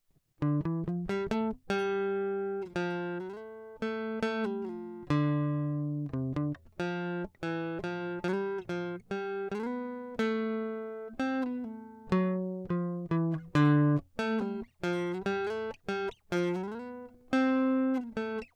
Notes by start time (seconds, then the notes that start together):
0.43 D3
0.67 E3
0.89 F3
1.11 G3
1.32 A3
1.71 G3
2.77 F3
3.31 A3
3.83 A3
4.24 A3
4.46 G3
4.67 F3
5.12 D3
6.15 C3
6.38 D3
6.81 F3
7.44 E3
7.85 F3
8.25 G3
8.71 F3
9.12 G3
9.53 B3
10.20 A3
11.21 C4
11.44 B3
11.66 A3
12.14 F#3
12.72 F3
13.12 E3
13.56 D3
14.20 A3
14.41 G3
14.85 F3
15.27 G3
15.48 A3
15.90 G3
16.33 F3
16.81 B3
17.34 C4
18.18 A3